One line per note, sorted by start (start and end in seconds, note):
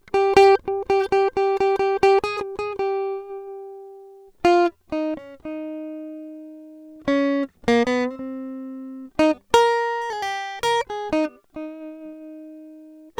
0.15 0.36 G4
0.38 0.61 G4
0.69 0.86 G4
0.91 1.09 G4
1.14 1.33 G4
1.38 1.60 G4
1.62 1.79 G4
1.81 2.00 G4
2.04 2.23 G4
2.25 2.38 G#4
2.38 2.56 G4
2.60 2.78 G#4
2.81 4.34 G4
4.46 4.73 F4
4.94 5.25 D#4
5.19 5.42 C#4
5.47 7.08 D#4
7.09 7.50 C#4
7.69 7.87 A#3
7.88 8.10 B3
8.21 9.13 C4
9.20 9.36 D#4
9.55 10.11 A#4
10.12 10.21 G#4
10.24 10.62 G4
10.64 10.87 A#4
10.91 11.16 G#4
11.14 11.31 D#4
11.58 13.14 D#4